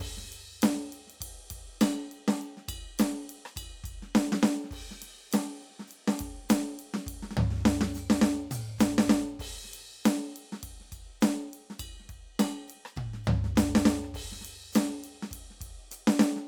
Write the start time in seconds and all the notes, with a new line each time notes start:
0.01 kick, crash
0.11 kick
0.18 snare
0.24 snare
0.29 snare, ride
0.62 snare, hi-hat pedal, ride
0.73 snare
0.93 ride
1.08 snare, ride
1.14 snare
1.20 kick, hi-hat pedal, ride
1.51 kick, ride
1.60 kick
1.81 snare, hi-hat pedal, ride bell
1.89 snare
2.12 ride
2.28 snare
2.36 hi-hat pedal
2.42 ride
2.58 snare
2.69 kick, snare, ride bell
2.75 kick
2.80 kick
2.98 snare, hi-hat pedal, ride
3.06 cross-stick
3.30 ride
3.46 cross-stick
3.56 kick, hi-hat pedal, ride bell
3.63 kick
3.66 kick
3.84 kick, ride bell
3.91 kick
4.03 snare
4.15 snare, hi-hat pedal
4.33 snare
4.42 snare, hi-hat pedal
4.65 snare
4.69 kick, hi-hat pedal, crash
4.77 kick
4.81 kick
4.92 snare
5.02 snare, ride
5.32 snare, hi-hat pedal, ride
5.59 hi-hat pedal, ride
5.80 snare
5.88 hi-hat pedal, ride
6.08 snare
6.20 kick, ride
6.28 kick
6.31 kick
6.50 snare, hi-hat pedal, ride
6.59 snare
6.80 ride
6.94 snare
7.07 kick, ride
7.14 kick
7.17 kick
7.23 snare
7.31 snare
7.37 floor tom
7.51 snare
7.56 snare
7.66 snare
7.81 snare
7.95 snare, hi-hat pedal
8.11 snare
8.22 snare
8.51 hi-hat pedal, mid tom
8.79 kick, snare, hi-hat pedal
8.99 snare
9.08 kick, snare
9.40 kick, crash
9.46 kick
9.49 kick
9.65 snare
9.74 ride
10.05 snare, hi-hat pedal, ride
10.16 snare
10.37 ride
10.53 snare
10.59 hi-hat pedal
10.63 kick, ride
10.69 kick
10.81 snare
10.85 snare
10.89 kick, snare
10.93 ride bell
10.99 kick
11.01 kick
11.21 snare, hi-hat pedal, ride bell
11.29 snare
11.49 hi-hat pedal
11.54 ride
11.71 snare
11.79 kick, hi-hat pedal, ride bell
11.86 kick
12.00 snare
12.06 kick, snare
12.10 ride
12.40 snare, hi-hat pedal, ride bell
12.68 hi-hat pedal, ride
12.86 cross-stick
12.96 kick, hi-hat pedal, mid tom
13.03 kick
13.06 kick
13.14 snare
13.25 kick, hi-hat pedal, floor tom
13.45 snare
13.56 kick, snare, hi-hat pedal
13.76 snare
13.86 snare
14.05 cross-stick
14.15 kick, crash
14.21 kick
14.24 kick
14.32 snare
14.42 snare, ride
14.73 snare, hi-hat pedal, ride
14.82 snare
15.04 ride
15.23 snare
15.31 kick, hi-hat pedal, ride
15.51 snare
15.57 kick, snare
15.62 ride
15.68 kick
15.70 kick
15.92 hi-hat pedal, ride
16.08 snare
16.20 snare, hi-hat pedal
16.37 snare